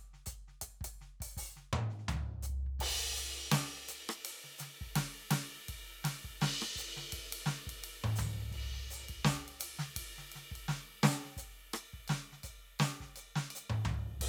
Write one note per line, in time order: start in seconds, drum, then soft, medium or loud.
0.13 snare soft
0.26 open hi-hat medium
0.26 kick soft
0.48 snare soft
0.61 kick soft
0.61 open hi-hat medium
0.81 kick medium
0.81 open hi-hat medium
1.01 snare soft
1.20 kick soft
1.20 open hi-hat medium
1.37 open hi-hat medium
1.37 kick medium
1.56 snare soft
1.73 high tom loud
1.90 snare soft
1.99 snare soft
2.08 floor tom loud
2.08 hi-hat pedal soft
2.43 hi-hat pedal medium
2.66 kick soft
2.79 kick medium
2.79 crash loud
2.79 ride loud
3.17 hi-hat pedal medium
3.52 snare loud
3.52 ride loud
3.88 hi-hat pedal medium
3.88 ride medium
4.09 cross-stick medium
4.25 hi-hat pedal medium
4.25 ride loud
4.44 snare soft
4.58 snare soft
4.58 hi-hat pedal medium
4.58 ride medium
4.81 kick medium
4.96 snare medium
4.96 ride loud
5.31 snare loud
5.31 ride loud
5.54 snare soft
5.69 kick soft
5.69 ride medium
6.04 snare medium
6.04 ride loud
6.24 kick soft
6.41 snare medium
6.41 ride loud
6.62 cross-stick medium
6.76 kick soft
6.76 hi-hat pedal medium
6.76 ride soft
6.97 snare soft
7.12 kick soft
7.12 ride loud
7.33 ride loud
7.46 snare medium
7.67 kick soft
7.67 ride medium
7.84 ride medium
8.04 open hi-hat soft
8.04 high tom loud
8.16 floor tom loud
8.16 hi-hat pedal medium
8.38 kick soft
8.38 snare soft
8.52 kick soft
8.52 ride medium
8.73 snare soft
8.90 snare soft
8.90 hi-hat pedal medium
9.09 kick soft
9.09 ride medium
9.25 snare loud
9.48 ride medium
9.60 kick soft
9.60 hi-hat pedal medium
9.60 ride loud
9.79 snare medium
9.96 kick soft
9.96 ride loud
10.18 snare soft
10.32 snare soft
10.32 ride medium
10.51 kick soft
10.56 ride medium
10.68 snare medium
11.03 snare loud
11.03 ride bell medium
11.24 snare soft
11.37 kick soft
11.37 hi-hat pedal medium
11.37 ride medium
11.74 cross-stick medium
11.74 ride bell medium
11.93 kick soft
12.08 snare medium
12.08 ride bell medium
12.32 snare soft
12.43 kick soft
12.43 hi-hat pedal medium
12.43 ride bell medium
12.79 snare medium
12.79 ride bell medium
13.00 kick soft
13.00 snare soft
13.16 hi-hat pedal medium
13.16 ride bell medium
13.36 snare medium
13.50 ride bell medium
13.55 hi-hat pedal medium
13.70 high tom loud
13.84 floor tom loud
13.84 hi-hat pedal soft
14.00 kick soft
14.21 kick medium
14.21 ride bell medium
14.21 crash medium